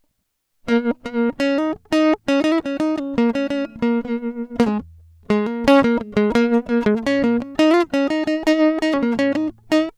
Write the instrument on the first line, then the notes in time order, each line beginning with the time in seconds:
acoustic guitar
0.70 A#3
1.07 A#3
1.41 C#4
1.59 D#4
1.94 D#4
2.29 C#4
2.46 E4
2.67 C#4
2.81 D#4
2.97 C#4
3.19 A#3
3.36 C#4
3.52 C#4
3.84 A#3
4.07 A#3
4.61 A#3
4.69 G#3
5.31 G#3
5.48 A#3
5.69 C#4
5.86 A#3
5.99 G#3
6.18 G#3
6.36 A#3
6.71 A#3
6.88 G#3
7.08 C#4
7.25 A#3
7.42 C#4
7.60 E4
7.95 C#4
8.12 D#4
8.29 D#4
8.48 D#4
8.84 D#4
8.95 C#4
9.04 A#3
9.20 C#4
9.37 D#4
9.73 D#4